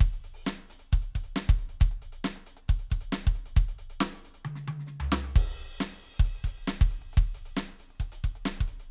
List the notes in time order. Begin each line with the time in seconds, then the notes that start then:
0.01 closed hi-hat, kick
0.14 closed hi-hat
0.24 closed hi-hat
0.34 open hi-hat
0.47 snare, hi-hat pedal
0.58 closed hi-hat
0.70 closed hi-hat
0.80 closed hi-hat
0.93 closed hi-hat, kick
1.02 closed hi-hat
1.15 closed hi-hat, kick
1.24 closed hi-hat
1.36 snare
1.48 kick, closed hi-hat
1.59 closed hi-hat
1.69 closed hi-hat
1.81 closed hi-hat, kick
1.92 closed hi-hat
2.02 closed hi-hat
2.13 closed hi-hat
2.25 snare
2.36 closed hi-hat
2.47 closed hi-hat
2.57 closed hi-hat
2.69 closed hi-hat, kick
2.80 closed hi-hat
2.91 closed hi-hat, kick
3.01 closed hi-hat
3.13 snare
3.24 closed hi-hat, kick
3.35 closed hi-hat
3.46 closed hi-hat
3.56 closed hi-hat, kick
3.69 closed hi-hat
3.90 closed hi-hat
4.01 snare
4.13 closed hi-hat
4.25 closed hi-hat
4.35 closed hi-hat
4.45 high tom
4.56 snare
4.68 high tom
4.80 snare
4.87 snare, hi-hat pedal
5.00 floor tom
5.07 kick
5.12 snare
5.25 cross-stick
5.36 kick, crash
5.45 closed hi-hat
5.60 closed hi-hat
5.70 closed hi-hat
5.81 snare
5.93 closed hi-hat
6.04 closed hi-hat
6.14 closed hi-hat
6.20 kick
6.25 closed hi-hat
6.44 closed hi-hat, kick
6.59 closed hi-hat
6.68 snare
6.81 closed hi-hat, kick
6.91 closed hi-hat
7.02 closed hi-hat
7.14 kick, closed hi-hat
7.24 closed hi-hat
7.35 closed hi-hat
7.46 closed hi-hat
7.57 snare
7.69 closed hi-hat
7.80 closed hi-hat
7.91 closed hi-hat
8.00 kick, closed hi-hat
8.12 closed hi-hat
8.24 closed hi-hat, kick
8.36 closed hi-hat
8.46 snare
8.57 closed hi-hat
8.61 kick
8.68 closed hi-hat
8.80 closed hi-hat